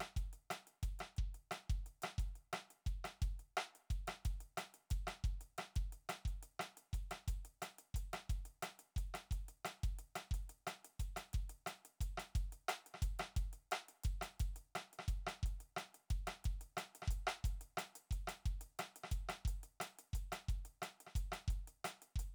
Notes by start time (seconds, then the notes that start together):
0.01 cross-stick, closed hi-hat
0.17 kick, closed hi-hat
0.33 closed hi-hat
0.51 cross-stick, closed hi-hat
0.68 closed hi-hat
0.83 kick, closed hi-hat
1.00 cross-stick, closed hi-hat
1.17 kick, closed hi-hat
1.35 closed hi-hat
1.52 cross-stick, closed hi-hat
1.70 kick, closed hi-hat
1.87 closed hi-hat
2.03 cross-stick, closed hi-hat
2.19 kick, closed hi-hat
2.36 closed hi-hat
2.53 cross-stick, closed hi-hat
2.71 closed hi-hat
2.87 kick, closed hi-hat
3.05 cross-stick, closed hi-hat
3.22 kick, closed hi-hat
3.40 closed hi-hat
3.57 cross-stick, closed hi-hat
3.76 closed hi-hat
3.91 kick, closed hi-hat
4.08 cross-stick, closed hi-hat
4.26 kick, closed hi-hat
4.41 closed hi-hat
4.58 cross-stick, closed hi-hat
4.75 closed hi-hat
4.91 kick, closed hi-hat
5.08 cross-stick, closed hi-hat
5.24 kick, closed hi-hat
5.41 closed hi-hat
5.58 cross-stick, closed hi-hat
5.76 kick, closed hi-hat
5.93 closed hi-hat
6.10 cross-stick, closed hi-hat
6.26 kick, closed hi-hat
6.43 closed hi-hat
6.60 cross-stick, closed hi-hat
6.78 closed hi-hat
6.94 kick, closed hi-hat
7.11 cross-stick, closed hi-hat
7.28 kick, closed hi-hat
7.45 closed hi-hat
7.62 cross-stick, closed hi-hat
7.79 closed hi-hat
7.95 kick, closed hi-hat
8.14 cross-stick, closed hi-hat
8.30 kick, closed hi-hat
8.46 closed hi-hat
8.63 cross-stick, closed hi-hat
8.80 closed hi-hat
8.97 kick, closed hi-hat
9.15 cross-stick, closed hi-hat
9.31 kick, closed hi-hat
9.49 closed hi-hat
9.65 cross-stick, closed hi-hat
9.84 kick, closed hi-hat
9.99 closed hi-hat
10.16 cross-stick, closed hi-hat
10.32 kick, closed hi-hat
10.50 closed hi-hat
10.67 cross-stick, closed hi-hat
10.85 closed hi-hat
11.00 kick, closed hi-hat
11.17 cross-stick, closed hi-hat
11.34 kick, closed hi-hat
11.50 closed hi-hat
11.67 cross-stick, closed hi-hat
11.85 closed hi-hat
12.01 kick, closed hi-hat
12.18 cross-stick, closed hi-hat
12.36 kick, closed hi-hat
12.53 closed hi-hat
12.69 cross-stick, closed hi-hat
12.87 closed hi-hat
12.94 cross-stick
13.03 kick, closed hi-hat
13.19 cross-stick, closed hi-hat
13.37 kick, closed hi-hat
13.53 closed hi-hat
13.72 cross-stick, closed hi-hat
13.89 closed hi-hat
14.04 kick, closed hi-hat
14.22 cross-stick, closed hi-hat
14.40 kick, closed hi-hat
14.57 closed hi-hat
14.76 cross-stick, closed hi-hat
14.94 closed hi-hat
14.99 cross-stick
15.08 kick, closed hi-hat
15.27 cross-stick, closed hi-hat
15.43 kick, closed hi-hat
15.61 closed hi-hat
15.77 cross-stick, closed hi-hat
15.95 closed hi-hat
16.11 kick, closed hi-hat
16.28 cross-stick, closed hi-hat
16.45 kick, closed hi-hat
16.62 closed hi-hat
16.77 cross-stick, closed hi-hat
16.96 closed hi-hat
17.03 cross-stick
17.08 kick, closed hi-hat
17.27 cross-stick, closed hi-hat
17.45 kick, closed hi-hat
17.62 closed hi-hat
17.78 cross-stick, closed hi-hat
17.96 closed hi-hat
18.11 kick, closed hi-hat
18.28 cross-stick, closed hi-hat
18.46 kick, closed hi-hat
18.62 closed hi-hat
18.79 cross-stick, closed hi-hat
18.96 closed hi-hat
19.04 cross-stick
19.12 kick, closed hi-hat
19.29 cross-stick, closed hi-hat
19.46 kick, closed hi-hat
19.64 closed hi-hat
19.81 cross-stick, closed hi-hat
19.99 closed hi-hat
20.14 kick, closed hi-hat
20.33 cross-stick, closed hi-hat
20.49 kick, closed hi-hat
20.66 closed hi-hat
20.82 cross-stick, closed hi-hat
21.01 closed hi-hat
21.07 cross-stick
21.16 kick, closed hi-hat
21.32 cross-stick, closed hi-hat
21.48 kick, closed hi-hat
21.68 closed hi-hat
21.85 closed hi-hat, cross-stick
22.02 closed hi-hat
22.16 kick, closed hi-hat